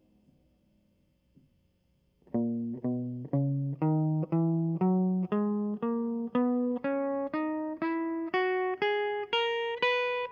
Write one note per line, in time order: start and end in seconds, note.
2.36 2.79 A#2
2.86 3.29 B2
3.34 3.76 C#3
3.82 4.27 D#3
4.33 4.80 E3
4.82 5.28 F#3
5.33 5.78 G#3
5.83 6.31 A#3
6.35 6.80 B3
6.84 7.31 C#4
7.34 7.79 D#4
7.82 8.31 E4
8.34 8.76 F#4
8.82 9.27 G#4
9.33 9.79 A#4
9.82 10.28 B4